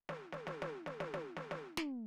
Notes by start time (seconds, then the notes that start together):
0.09 snare, high tom
0.32 snare, high tom
0.47 snare, high tom
0.61 snare, high tom
0.86 snare, high tom
1.00 snare, high tom
1.13 snare, high tom
1.37 snare, high tom
1.51 snare, high tom
1.77 snare, floor tom